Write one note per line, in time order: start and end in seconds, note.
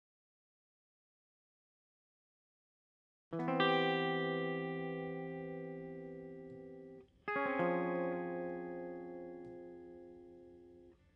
3.34 7.02 E3
3.40 7.04 B3
3.48 7.04 C4
3.60 7.05 G4
7.28 10.17 G#4
7.36 9.46 C#4
7.46 10.94 C4
7.60 10.97 F3